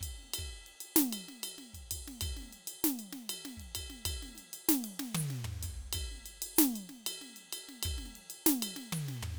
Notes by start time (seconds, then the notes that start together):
0.01 kick, hi-hat pedal, ride bell
0.19 snare
0.23 snare
0.26 snare
0.29 snare
0.32 snare, ride bell
0.39 kick
0.67 ride
0.81 ride bell
0.96 snare
1.13 ride bell
1.29 snare
1.43 hi-hat pedal, ride bell
1.58 snare
1.74 kick, ride bell
1.91 kick, ride bell
2.08 snare
2.21 kick, ride bell
2.28 kick
2.37 snare
2.42 snare
2.46 snare
2.49 snare, ride bell
2.68 ride bell
2.84 snare
2.88 hi-hat pedal
2.99 ride bell
3.13 snare
3.29 hi-hat pedal, ride bell
3.45 snare
3.57 kick, ride
3.75 kick, ride bell
3.90 snare
4.06 kick, ride bell
4.23 snare
4.28 snare
4.35 snare, ride bell
4.53 ride bell
4.69 snare
4.84 ride
5.00 snare
5.15 hi-hat pedal, mid tom
5.30 snare
5.45 floor tom
5.63 kick, ride bell
5.79 snare
5.93 kick, ride bell
6.12 snare
6.15 snare
6.26 ride bell
6.42 ride bell
6.56 snare, hi-hat pedal
6.76 ride bell
6.89 snare
7.07 ride bell
7.11 hi-hat pedal
7.22 snare
7.29 snare
7.34 snare, ride bell
7.39 snare
7.42 snare
7.46 snare
7.53 hi-hat pedal, ride bell
7.69 snare
7.83 kick, ride bell
7.91 kick
7.98 snare
8.06 snare
8.16 ride
8.30 ride bell
8.46 snare
8.62 ride bell
8.76 snare
8.93 hi-hat pedal, mid tom
9.09 snare
9.23 floor tom
9.34 snare